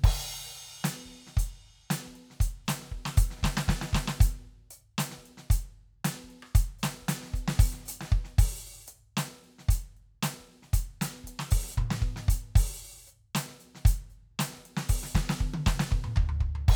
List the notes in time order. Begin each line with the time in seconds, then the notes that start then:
0.01 kick
0.04 kick, hi-hat pedal, crash
0.55 hi-hat pedal
0.85 closed hi-hat, snare
1.06 kick
1.27 snare
1.38 closed hi-hat, kick
1.91 closed hi-hat, snare
2.05 kick, snare
2.16 closed hi-hat
2.31 snare
2.41 closed hi-hat, kick
2.66 closed hi-hat, snare, hi-hat pedal
2.81 snare
2.84 snare
2.87 snare
2.92 kick
3.06 snare
3.18 open hi-hat, kick
3.31 snare
3.37 snare
3.40 snare
3.43 kick, snare
3.45 snare
3.58 snare
3.69 kick, snare
3.82 snare
3.94 kick, snare
4.08 snare
4.21 closed hi-hat, kick
4.71 hi-hat pedal, open hi-hat
4.99 closed hi-hat, snare
5.12 snare
5.18 kick
5.26 closed hi-hat
5.38 snare
5.51 closed hi-hat, kick
6.05 closed hi-hat, snare
6.24 kick
6.31 closed hi-hat
6.43 cross-stick
6.56 open hi-hat, kick
6.79 hi-hat pedal
6.84 closed hi-hat, snare
7.03 kick
7.09 closed hi-hat, snare
7.22 snare
7.26 snare
7.31 kick, snare
7.36 closed hi-hat
7.48 snare
7.60 open hi-hat, kick
7.73 snare
7.78 snare
7.81 snare
7.84 snare
7.86 snare, hi-hat pedal
7.88 closed hi-hat, snare
8.02 snare
8.05 snare
8.13 kick
8.25 snare
8.39 open hi-hat, kick, hi-hat pedal
8.88 closed hi-hat, hi-hat pedal
9.18 closed hi-hat, snare
9.45 closed hi-hat
9.59 snare
9.69 closed hi-hat, kick
9.97 closed hi-hat
10.23 closed hi-hat, snare
10.41 kick
10.63 snare
10.74 closed hi-hat, kick
11.02 closed hi-hat, snare
11.16 snare
11.25 kick, closed hi-hat
11.40 snare
11.52 open hi-hat, kick
11.63 snare
11.70 snare
11.73 snare, hi-hat pedal
11.78 kick, mid tom
11.91 snare
12.03 kick, snare
12.17 snare
12.29 closed hi-hat, kick
12.56 open hi-hat, kick
13.08 hi-hat pedal
13.36 closed hi-hat, snare
13.49 snare
13.61 closed hi-hat
13.76 snare
13.86 closed hi-hat, kick
14.10 hi-hat pedal
14.40 closed hi-hat, snare
14.52 snare
14.55 kick, snare
14.66 closed hi-hat
14.77 snare
14.90 open hi-hat, kick
15.04 snare
15.15 kick, snare, hi-hat pedal
15.30 snare
15.39 kick, hi-hat pedal, high tom
15.54 high tom
15.67 kick, snare
15.80 snare
15.92 kick, mid tom
16.05 mid tom
16.17 kick, floor tom
16.30 floor tom
16.41 kick, floor tom
16.56 floor tom
16.65 kick
16.69 kick, crash